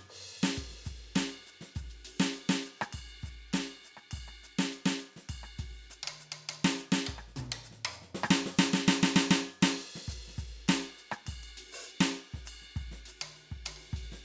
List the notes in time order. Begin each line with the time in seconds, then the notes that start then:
0.10 crash
0.21 hi-hat pedal
0.44 snare
0.55 kick, hi-hat pedal, ride
0.72 snare
0.80 snare
0.86 kick, hi-hat pedal, ride
0.95 kick
1.16 snare, hi-hat pedal, ride bell
1.27 snare
1.47 hi-hat pedal, ride
1.62 snare
1.76 kick, snare, hi-hat pedal, ride
1.83 kick, snare
1.86 kick, snare
1.90 snare, ride
2.05 hi-hat pedal, ride
2.20 snare
2.35 hi-hat pedal, ride
2.50 snare
2.65 hi-hat pedal, ride
2.82 cross-stick
2.93 kick, hi-hat pedal, ride bell
3.22 kick, hi-hat pedal, ride
3.32 kick
3.54 snare, hi-hat pedal, ride bell
3.65 snare
3.84 hi-hat pedal, ride
3.97 cross-stick
4.12 kick, hi-hat pedal, ride bell
4.19 kick
4.28 cross-stick
4.44 hi-hat pedal, ride
4.59 snare
4.71 hi-hat pedal, ride
4.86 snare
5.00 hi-hat pedal, ride
5.17 snare
5.29 kick, hi-hat pedal, ride bell
5.38 kick
5.44 cross-stick
5.58 kick, hi-hat pedal, ride
5.66 kick
5.91 hi-hat pedal
6.04 high tom
6.08 high tom
6.20 hi-hat pedal
6.32 high tom
6.49 hi-hat pedal, high tom
6.55 high tom
6.65 snare
6.79 hi-hat pedal
6.92 snare
7.07 kick, hi-hat pedal, mid tom
7.19 cross-stick
7.28 snare
7.37 kick, hi-hat pedal, mid tom
7.52 mid tom
7.65 hi-hat pedal
7.72 snare
7.85 floor tom
7.93 hi-hat pedal
8.02 snare
8.15 snare
8.24 cross-stick, hi-hat pedal
8.31 snare
8.46 snare
8.58 snare, hi-hat pedal
8.74 snare
8.87 snare, hi-hat pedal
9.03 snare
9.16 snare, hi-hat pedal
9.31 snare
9.62 snare, crash
9.96 snare
10.08 kick, hi-hat pedal, ride
10.14 kick
10.18 kick
10.28 snare
10.33 snare
10.36 kick, snare, hi-hat pedal, ride
10.39 snare
10.45 kick
10.50 kick
10.69 snare, hi-hat pedal, ride bell
10.98 hi-hat pedal, ride
11.12 cross-stick
11.26 kick, snare, hi-hat pedal, ride bell
11.37 kick
11.44 ride bell
11.58 hi-hat pedal, ride
11.73 open hi-hat
11.88 ride
12.01 snare
12.18 ride
12.34 kick, snare
12.46 hi-hat pedal, ride bell
12.62 snare
12.77 kick, ride bell
12.83 kick
12.87 kick
12.92 snare
13.06 hi-hat pedal, ride
13.22 high tom
13.37 ride bell
13.52 kick
13.66 hi-hat pedal, high tom, ride
13.77 high tom
13.93 kick, ride
14.04 kick
14.12 snare